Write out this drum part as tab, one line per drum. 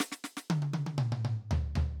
SD |oooo------------|
T1 |----oooo--------|
T2 |--------ooo-----|
FT |------------o-o-|